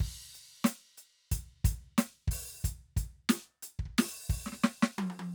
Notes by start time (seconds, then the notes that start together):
0.01 kick, hi-hat pedal, crash
0.35 closed hi-hat
0.65 closed hi-hat, snare
0.98 closed hi-hat
1.32 closed hi-hat, kick
1.65 closed hi-hat, kick
1.99 closed hi-hat, snare
2.28 open hi-hat, kick
2.63 closed hi-hat, kick, hi-hat pedal
2.97 closed hi-hat, kick
3.30 closed hi-hat, snare
3.63 closed hi-hat
3.80 kick
3.86 kick
3.99 open hi-hat, snare
4.30 open hi-hat, kick
4.47 snare
4.53 snare
4.64 snare
4.83 snare
4.99 high tom
5.11 high tom
5.20 high tom